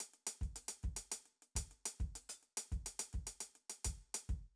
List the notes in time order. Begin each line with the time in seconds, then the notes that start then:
0.01 closed hi-hat
0.14 closed hi-hat
0.27 closed hi-hat
0.42 kick, closed hi-hat
0.57 closed hi-hat
0.69 closed hi-hat
0.84 kick, closed hi-hat
0.97 closed hi-hat
1.12 closed hi-hat
1.26 closed hi-hat
1.43 closed hi-hat
1.56 kick, closed hi-hat
1.72 closed hi-hat
1.86 closed hi-hat
2.01 kick, closed hi-hat
2.16 closed hi-hat
2.30 closed hi-hat
2.43 closed hi-hat
2.58 closed hi-hat
2.72 kick, closed hi-hat
2.87 closed hi-hat
3.00 closed hi-hat
3.14 kick, closed hi-hat
3.28 closed hi-hat
3.41 closed hi-hat
3.56 closed hi-hat
3.70 closed hi-hat
3.85 kick, closed hi-hat
4.03 closed hi-hat
4.15 closed hi-hat
4.30 kick, closed hi-hat